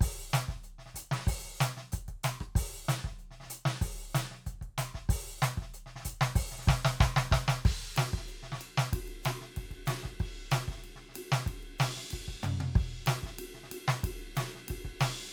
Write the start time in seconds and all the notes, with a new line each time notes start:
0.01 open hi-hat, kick
0.32 open hi-hat, kick, snare, hi-hat pedal
0.49 kick, snare
0.63 closed hi-hat, hi-hat pedal
0.71 kick
0.79 snare
0.86 snare
0.95 closed hi-hat, kick, snare
1.12 snare
1.19 snare
1.27 open hi-hat, kick
1.45 open hi-hat
1.61 closed hi-hat, snare, hi-hat pedal
1.77 snare
1.92 closed hi-hat, kick
2.08 kick, closed hi-hat
2.24 closed hi-hat, snare
2.41 kick, cross-stick
2.56 open hi-hat, kick
2.89 open hi-hat, snare, hi-hat pedal
3.05 kick, snare
3.19 closed hi-hat
3.31 snare
3.40 snare
3.43 snare
3.46 kick, snare
3.48 closed hi-hat, snare
3.66 snare
3.82 open hi-hat, kick
3.98 open hi-hat
4.14 closed hi-hat, snare, hi-hat pedal
4.32 snare
4.47 closed hi-hat, kick
4.62 kick, closed hi-hat
4.78 closed hi-hat, snare
4.95 kick, snare
5.09 open hi-hat, kick
5.42 open hi-hat, snare, hi-hat pedal
5.58 kick, snare
5.74 closed hi-hat
5.86 snare
5.96 snare
6.00 snare
6.05 closed hi-hat, kick
6.21 snare
6.36 open hi-hat, kick
6.52 snare
6.59 snare
6.62 snare
6.66 kick, snare
6.69 snare
6.85 snare
7.00 kick, snare, hi-hat pedal
7.17 snare
7.32 kick, snare
7.48 snare
7.65 kick, crash
7.97 snare, hi-hat pedal, ride
8.14 kick, snare
8.28 hi-hat pedal, ride
8.43 snare
8.52 snare
8.56 kick, snare, hi-hat pedal
8.61 ride bell
8.78 snare
8.93 kick, ride
9.08 ride
9.23 snare, hi-hat pedal, ride
9.42 snare
9.57 kick, ride
9.71 kick, ride
9.86 snare, hi-hat pedal, ride
10.03 kick, snare
10.20 kick, ride
10.51 snare, hi-hat pedal, ride
10.68 kick, snare
10.77 snare
10.84 ride
10.96 snare
11.09 kick, snare
11.12 snare, hi-hat pedal
11.16 ride
11.32 snare
11.40 snare
11.47 kick, ride
11.63 ride
11.79 snare, hi-hat pedal, ride
11.97 snare
12.04 snare
12.10 snare, ride
12.13 kick, snare
12.28 kick
12.43 hi-hat pedal, mid tom, high tom
12.61 high tom
12.76 kick, ride
13.07 snare, hi-hat pedal, ride
13.23 kick, snare
13.39 ride
13.55 snare
13.64 snare
13.69 kick, hi-hat pedal, ride
13.88 snare
13.96 snare
14.04 kick, ride
14.20 ride
14.36 snare, hi-hat pedal, ride
14.56 snare
14.69 kick, ride
14.85 kick
15.00 snare, hi-hat pedal, ride